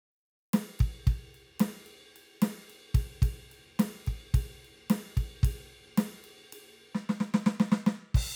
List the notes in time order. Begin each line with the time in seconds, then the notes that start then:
0.54 snare, ride
0.80 kick, ride
1.07 kick, ride
1.35 ride
1.60 snare, ride
1.86 ride
2.16 ride
2.42 snare, ride
2.70 ride
2.95 kick, ride
3.22 kick, ride
3.52 ride
3.79 snare, ride
4.07 kick, ride
4.34 kick, ride
4.65 ride
4.90 snare, ride
5.17 kick, ride
5.43 kick, ride
5.98 snare, ride
6.24 ride
6.53 ride
6.95 snare
7.09 snare
7.21 snare
7.34 snare
7.46 snare
7.60 snare
7.72 snare
7.87 snare
8.15 kick, crash